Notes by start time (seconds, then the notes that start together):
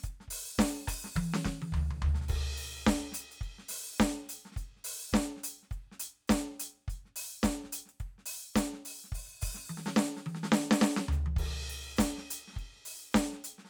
0.01 kick, snare, hi-hat pedal, open hi-hat
0.21 snare
0.28 open hi-hat, kick
0.59 open hi-hat, kick, snare
0.88 open hi-hat, kick, cross-stick
1.05 snare
1.16 kick, high tom
1.34 snare
1.45 kick, snare
1.62 high tom
1.73 kick, floor tom
1.91 floor tom
2.02 kick, floor tom
2.15 snare
2.21 snare
2.28 kick, snare, hi-hat pedal, ride
2.48 snare
2.58 open hi-hat
2.87 kick, snare, hi-hat pedal
3.12 open hi-hat, snare
3.32 closed hi-hat
3.41 kick, closed hi-hat
3.59 snare
3.69 open hi-hat, snare
3.98 kick, snare, closed hi-hat, hi-hat pedal
4.24 snare
4.29 open hi-hat
4.45 snare
4.52 snare
4.57 closed hi-hat, kick, snare
4.76 kick, snare
4.85 open hi-hat
5.11 kick, snare, closed hi-hat, hi-hat pedal
5.37 snare
5.44 open hi-hat
5.63 snare
5.71 kick, closed hi-hat, hi-hat pedal
5.92 snare
6.00 closed hi-hat
6.28 closed hi-hat, kick, snare, hi-hat pedal
6.53 snare
6.60 closed hi-hat
6.88 closed hi-hat, kick
7.06 snare
7.16 open hi-hat
7.42 closed hi-hat, kick, snare, hi-hat pedal
7.64 kick, snare
7.73 closed hi-hat
7.86 snare, closed hi-hat
8.00 kick, closed hi-hat
8.18 snare
8.26 open hi-hat
8.54 closed hi-hat, kick, snare, hi-hat pedal
8.74 snare
8.85 open hi-hat
9.04 snare
9.12 open hi-hat, kick
9.42 open hi-hat, kick
9.55 snare
9.70 high tom
9.78 snare
9.86 snare
9.97 snare
10.17 snare
10.26 high tom
10.35 snare
10.44 snare
10.52 snare
10.71 snare
10.82 snare
10.97 snare
11.09 floor tom, hi-hat pedal
11.26 high tom
11.37 kick, ride
11.70 open hi-hat
11.97 closed hi-hat, kick, snare, hi-hat pedal
12.18 snare
12.31 closed hi-hat
12.48 snare
12.53 kick, snare
12.59 closed hi-hat
12.76 snare
12.86 open hi-hat
13.12 closed hi-hat, kick, snare, hi-hat pedal
13.33 snare
13.44 closed hi-hat
13.59 snare
13.65 snare